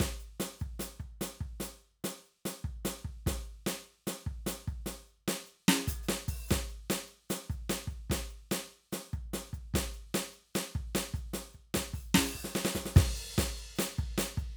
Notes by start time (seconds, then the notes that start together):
0.01 closed hi-hat, kick, snare
0.19 closed hi-hat
0.40 closed hi-hat, snare
0.58 closed hi-hat, kick
0.79 closed hi-hat, snare
1.00 kick, closed hi-hat
1.21 closed hi-hat, snare
1.41 kick, closed hi-hat
1.60 closed hi-hat, snare
1.81 closed hi-hat
2.04 closed hi-hat, snare
2.24 closed hi-hat
2.45 closed hi-hat, snare
2.64 kick, closed hi-hat
2.85 closed hi-hat, snare
3.05 kick
3.26 closed hi-hat, kick, snare
3.46 closed hi-hat
3.66 closed hi-hat, snare
3.85 closed hi-hat
4.07 closed hi-hat, snare
4.26 kick, closed hi-hat
4.46 closed hi-hat, snare
4.67 closed hi-hat, kick
4.86 closed hi-hat, snare
5.06 closed hi-hat
5.28 closed hi-hat, snare
5.47 closed hi-hat
5.68 snare
5.87 closed hi-hat, kick
6.03 hi-hat pedal
6.09 snare
6.28 kick, open hi-hat
6.48 closed hi-hat, kick, snare, hi-hat pedal
6.69 closed hi-hat
6.90 closed hi-hat, snare
7.08 closed hi-hat
7.29 closed hi-hat, snare
7.49 closed hi-hat, kick
7.69 closed hi-hat, snare
7.87 kick, closed hi-hat
8.10 closed hi-hat, kick, snare
8.30 closed hi-hat
8.51 closed hi-hat, snare
8.71 closed hi-hat
8.92 closed hi-hat, snare
9.13 kick, closed hi-hat
9.33 closed hi-hat, snare
9.53 kick, closed hi-hat
9.74 closed hi-hat, kick, snare
9.94 closed hi-hat
10.14 closed hi-hat, snare
10.33 closed hi-hat
10.54 closed hi-hat, snare
10.74 kick, closed hi-hat
10.95 closed hi-hat, snare
11.14 closed hi-hat, kick
11.33 closed hi-hat, snare
11.53 kick, closed hi-hat
11.74 open hi-hat, kick, snare
11.93 open hi-hat, kick
12.14 open hi-hat, kick, snare
12.34 open hi-hat, kick
12.44 snare
12.55 snare
12.65 snare
12.73 kick, hi-hat pedal
12.85 snare
12.95 kick, snare, hi-hat pedal, crash
13.16 closed hi-hat
13.36 closed hi-hat, kick, snare, hi-hat pedal
13.58 closed hi-hat
13.76 closed hi-hat, snare, hi-hat pedal
13.98 kick, closed hi-hat
14.18 closed hi-hat, snare
14.37 kick, closed hi-hat